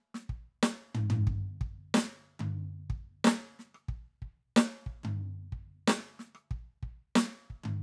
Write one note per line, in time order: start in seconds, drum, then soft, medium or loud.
0.15 snare medium
0.30 kick soft
0.63 snare loud
0.95 floor tom loud
1.10 floor tom loud
1.27 kick medium
1.61 kick medium
1.94 snare loud
1.97 snare loud
2.40 floor tom loud
2.40 high tom medium
2.90 kick medium
3.25 snare loud
3.27 snare loud
3.59 snare soft
3.75 cross-stick soft
3.89 kick medium
4.22 kick soft
4.57 snare loud
4.87 kick soft
5.04 floor tom loud
5.04 high tom medium
5.53 kick soft
5.88 snare loud
5.90 snare loud
6.20 snare soft
6.35 cross-stick soft
6.51 kick medium
6.83 kick soft
7.16 snare loud
7.17 snare loud
7.50 kick soft
7.64 floor tom loud
7.64 high tom medium